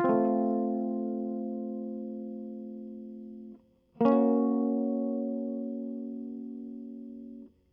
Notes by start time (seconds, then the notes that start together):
0.01 F4
0.05 C4
0.10 A3
4.02 A#3
4.06 C#4
4.12 F#4